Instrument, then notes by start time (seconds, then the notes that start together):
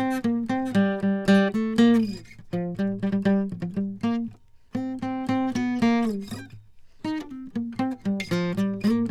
acoustic guitar
0.00 C4
0.26 A#3
0.51 C4
0.76 G3
1.05 G3
1.29 G3
1.56 A3
1.80 A#3
2.54 F3
2.81 G3
3.04 G3
3.14 G3
3.27 G3
3.53 F3
3.63 F3
3.78 G3
4.05 A#3
4.76 C4
5.04 C4
5.30 C4
5.57 B3
5.84 A#3
6.06 G#3
6.33 C4
7.06 D#4
7.20 D4
7.32 C4
7.57 A#3
7.80 C4
8.07 G3
8.33 F3
8.59 G3
8.85 A#3